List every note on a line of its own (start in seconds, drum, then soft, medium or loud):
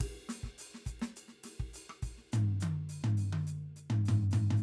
0.01 kick medium
0.01 hi-hat pedal medium
0.01 ride loud
0.17 kick soft
0.29 snare medium
0.29 hi-hat pedal medium
0.44 kick soft
0.44 snare soft
0.58 hi-hat pedal medium
0.58 ride bell medium
0.75 snare soft
0.86 kick soft
0.86 hi-hat pedal medium
0.86 ride soft
1.00 snare medium
1.00 ride soft
1.17 hi-hat pedal medium
1.17 ride bell medium
1.29 snare soft
1.44 snare soft
1.44 hi-hat pedal medium
1.44 ride medium
1.58 kick soft
1.58 ride soft
1.74 hi-hat pedal medium
1.74 ride bell medium
1.90 cross-stick medium
2.03 kick soft
2.03 hi-hat pedal medium
2.03 ride soft
2.18 snare soft
2.33 floor tom loud
2.33 hi-hat pedal medium
2.61 closed hi-hat soft
2.61 hi-hat pedal medium
2.61 high tom loud
2.89 hi-hat pedal medium
3.04 floor tom loud
3.18 hi-hat pedal medium
3.33 high tom loud
3.47 hi-hat pedal medium
3.77 hi-hat pedal soft
3.90 floor tom loud
4.06 floor tom loud
4.06 hi-hat pedal medium
4.31 floor tom loud
4.31 hi-hat pedal medium
4.51 floor tom loud
4.57 hi-hat pedal soft